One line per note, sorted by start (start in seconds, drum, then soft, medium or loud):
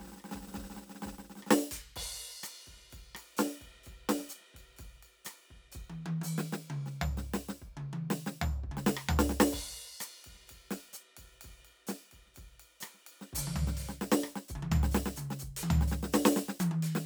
0.01 snare soft
0.04 snare soft
0.07 snare soft
0.13 snare soft
0.17 cross-stick soft
0.17 snare soft
0.25 snare soft
0.29 snare soft
0.32 kick soft
0.32 snare medium
0.37 kick soft
0.37 snare soft
0.41 snare soft
0.43 snare soft
0.48 snare soft
0.52 snare soft
0.55 kick soft
0.55 snare medium
0.59 snare soft
0.63 snare soft
0.66 snare soft
0.71 snare soft
0.74 snare soft
0.77 snare soft
0.82 snare soft
0.87 snare soft
0.90 snare soft
0.95 snare soft
1.00 snare soft
1.03 kick soft
1.03 snare medium
1.08 snare medium
1.13 snare soft
1.19 snare soft
1.24 snare soft
1.30 snare soft
1.36 snare soft
1.38 snare soft
1.43 cross-stick soft
1.43 snare soft
1.51 snare loud
1.72 kick soft
1.72 closed hi-hat medium
1.77 kick soft
1.96 kick soft
1.96 crash loud
2.03 kick soft
2.44 cross-stick medium
2.44 hi-hat pedal medium
2.44 ride medium
2.67 kick soft
2.67 ride soft
2.73 kick soft
2.78 snare soft
2.90 kick soft
2.90 hi-hat pedal soft
2.90 ride medium
2.99 kick soft
3.15 cross-stick medium
3.15 ride medium
3.37 snare medium
3.37 hi-hat pedal medium
3.37 ride loud
3.46 snare soft
3.62 kick soft
3.62 ride soft
3.67 kick soft
3.75 snare soft
3.84 kick soft
3.84 hi-hat pedal soft
3.84 ride soft
3.93 kick soft
4.10 snare medium
4.10 ride loud
4.20 snare soft
4.30 hi-hat pedal medium
4.30 ride soft
4.41 snare soft
4.55 kick soft
4.55 ride soft
4.60 kick soft
4.77 kick soft
4.77 hi-hat pedal soft
4.77 ride medium
4.86 kick soft
5.03 ride soft
5.25 cross-stick medium
5.25 hi-hat pedal medium
5.25 ride medium
5.51 kick soft
5.56 kick soft
5.56 snare soft
5.72 kick soft
5.72 hi-hat pedal soft
5.72 ride bell medium
5.82 kick soft
5.90 high tom medium
6.06 high tom medium
6.22 hi-hat pedal medium
6.22 high tom medium
6.39 snare medium
6.53 snare medium
6.71 mid tom medium
6.87 snare soft
7.02 floor tom loud
7.18 snare medium
7.34 snare medium
7.49 snare medium
7.62 kick soft
7.68 kick soft
7.77 mid tom medium
7.94 high tom medium
8.11 snare loud
8.27 snare medium
8.42 floor tom loud
8.64 kick soft
8.70 kick soft
8.70 mid tom medium
8.78 snare medium
8.87 snare loud
8.97 cross-stick medium
9.09 floor tom loud
9.20 snare loud
9.30 snare medium
9.41 snare loud
9.53 kick soft
9.53 crash medium
9.60 kick soft
10.01 cross-stick medium
10.01 hi-hat pedal loud
10.01 ride medium
10.25 kick soft
10.25 ride medium
10.32 kick soft
10.32 snare soft
10.40 snare soft
10.44 snare soft
10.44 hi-hat pedal soft
10.50 kick soft
10.50 ride medium
10.56 kick soft
10.71 snare medium
10.71 ride medium
10.94 hi-hat pedal medium
11.17 kick soft
11.17 ride medium
11.24 kick soft
11.41 kick soft
11.41 snare soft
11.41 hi-hat pedal soft
11.41 ride medium
11.50 kick soft
11.65 ride soft
11.88 snare medium
11.88 hi-hat pedal medium
11.88 ride medium
12.12 kick soft
12.12 ride soft
12.27 snare soft
12.35 kick soft
12.35 hi-hat pedal soft
12.35 ride medium
12.60 ride medium
12.81 cross-stick medium
12.81 hi-hat pedal medium
12.81 ride medium
12.95 snare soft
13.07 ride medium
13.22 snare soft
13.33 kick soft
13.33 hi-hat pedal loud
13.38 kick soft
13.38 mid tom medium
13.48 high tom medium
13.56 floor tom loud
13.68 snare medium
13.78 closed hi-hat medium
13.89 snare medium
13.95 hi-hat pedal soft
14.02 snare medium
14.12 snare loud
14.21 cross-stick medium
14.21 hi-hat pedal soft
14.36 snare medium
14.49 kick medium
14.49 hi-hat pedal medium
14.56 kick soft
14.56 mid tom medium
14.60 kick soft
14.60 high tom medium
14.72 floor tom loud
14.84 snare medium
14.92 snare loud
14.92 hi-hat pedal medium
15.06 snare medium
15.17 hi-hat pedal medium
15.17 mid tom medium
15.31 snare medium
15.40 kick soft
15.40 hi-hat pedal medium
15.57 closed hi-hat loud
15.62 hi-hat pedal medium
15.62 high tom loud
15.71 floor tom loud
15.82 snare medium
15.88 hi-hat pedal medium
15.92 snare medium
16.03 snare medium
16.13 snare loud
16.13 hi-hat pedal medium
16.26 snare loud
16.37 snare loud
16.37 hi-hat pedal medium
16.49 snare medium
16.60 hi-hat pedal loud
16.60 high tom loud
16.72 high tom medium
16.83 closed hi-hat medium
16.83 hi-hat pedal medium
16.96 snare medium